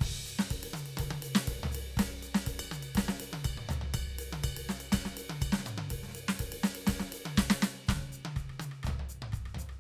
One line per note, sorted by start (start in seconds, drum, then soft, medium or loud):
0.01 kick medium
0.01 hi-hat pedal medium
0.01 ride loud
0.27 hi-hat pedal medium
0.27 ride medium
0.40 snare loud
0.51 kick medium
0.51 hi-hat pedal medium
0.51 ride loud
0.64 ride loud
0.74 hi-hat pedal medium
0.74 high tom loud
0.87 ride medium
0.98 kick medium
0.98 hi-hat pedal medium
0.98 high tom loud
0.98 ride loud
1.11 high tom loud
1.23 hi-hat pedal medium
1.23 ride loud
1.36 snare loud
1.48 kick medium
1.48 hi-hat pedal medium
1.48 ride loud
1.64 floor tom loud
1.72 hi-hat pedal medium
1.72 ride loud
1.97 kick medium
1.97 snare loud
1.97 hi-hat pedal medium
1.97 ride loud
2.23 hi-hat pedal medium
2.23 ride bell medium
2.35 snare loud
2.47 kick medium
2.47 hi-hat pedal medium
2.47 ride loud
2.60 ride bell loud
2.72 hi-hat pedal medium
2.72 high tom loud
2.83 ride bell medium
2.96 kick medium
2.96 snare loud
2.96 hi-hat pedal medium
2.96 ride loud
3.09 snare loud
3.21 hi-hat pedal medium
3.21 ride loud
3.34 high tom loud
3.45 kick medium
3.45 hi-hat pedal medium
3.45 ride bell loud
3.58 mid tom loud
3.67 kick soft
3.67 floor tom loud
3.67 hi-hat pedal medium
3.82 floor tom medium
3.95 kick medium
3.95 hi-hat pedal medium
3.95 ride bell loud
4.19 hi-hat pedal loud
4.19 ride loud
4.33 high tom loud
4.44 kick medium
4.44 hi-hat pedal medium
4.44 ride bell loud
4.57 ride loud
4.70 snare loud
4.70 hi-hat pedal medium
4.81 ride bell medium
4.93 kick medium
4.93 snare loud
4.93 hi-hat pedal medium
4.93 ride bell loud
5.06 snare medium
5.18 hi-hat pedal medium
5.18 ride loud
5.30 high tom loud
5.41 kick medium
5.41 hi-hat pedal medium
5.41 ride bell loud
5.53 snare loud
5.59 snare medium
5.66 hi-hat pedal medium
5.66 mid tom loud
5.78 high tom loud
5.90 kick medium
5.90 hi-hat pedal medium
5.90 ride loud
6.04 snare soft
6.09 snare soft
6.11 snare soft
6.16 hi-hat pedal medium
6.16 ride loud
6.29 snare loud
6.40 kick medium
6.40 hi-hat pedal medium
6.40 ride loud
6.53 ride loud
6.64 snare loud
6.64 hi-hat pedal medium
6.76 ride loud
6.87 kick medium
6.87 snare loud
6.87 hi-hat pedal medium
6.87 ride loud
7.00 snare medium
7.13 hi-hat pedal medium
7.13 ride loud
7.26 high tom loud
7.37 kick medium
7.37 snare loud
7.37 hi-hat pedal medium
7.51 snare loud
7.62 snare loud
7.62 hi-hat pedal medium
7.87 kick medium
7.87 snare loud
7.87 hi-hat pedal medium
7.87 high tom loud
8.13 hi-hat pedal medium
8.26 high tom loud
8.37 kick medium
8.37 cross-stick medium
8.37 hi-hat pedal medium
8.50 cross-stick soft
8.60 hi-hat pedal loud
8.60 high tom loud
8.72 cross-stick soft
8.84 kick medium
8.84 cross-stick medium
8.84 hi-hat pedal medium
8.87 cross-stick soft
8.87 floor tom loud
9.00 floor tom medium
9.10 hi-hat pedal loud
9.23 mid tom loud
9.33 kick medium
9.33 cross-stick soft
9.33 hi-hat pedal medium
9.46 cross-stick soft
9.55 floor tom loud
9.55 hi-hat pedal medium
9.70 cross-stick soft